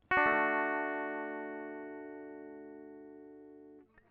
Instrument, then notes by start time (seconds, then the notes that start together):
electric guitar
0.12 F#4
0.18 D4
0.27 A3
0.33 D#3